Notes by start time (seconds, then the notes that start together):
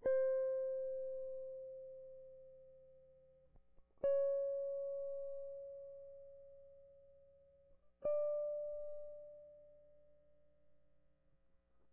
0.06 C5
4.04 C#5
8.06 D5